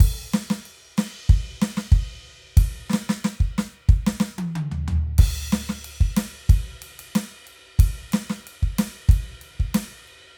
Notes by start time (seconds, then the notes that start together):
0.00 kick, ride, crash
0.32 snare, ride
0.50 snare
0.66 ride
0.98 snare, ride
1.29 kick, ride
1.62 snare, ride
1.77 snare
1.92 kick, ride
2.57 kick, ride
2.90 snare
2.93 snare
3.09 snare
3.25 snare
3.40 kick
3.58 snare
3.89 kick
4.07 snare
4.20 snare
4.38 high tom
4.56 mid tom
4.72 floor tom
4.88 floor tom
5.18 kick, ride, crash
5.53 snare
5.69 snare
5.85 ride
6.01 kick
6.17 snare, ride
6.49 kick, ride
6.82 ride
6.99 ride
7.15 snare, ride
7.47 ride
7.79 kick, ride
8.13 snare, ride
8.30 snare
8.47 ride
8.63 kick
8.79 snare, ride
9.09 kick, ride
9.42 ride
9.60 kick
9.75 snare, ride
10.08 ride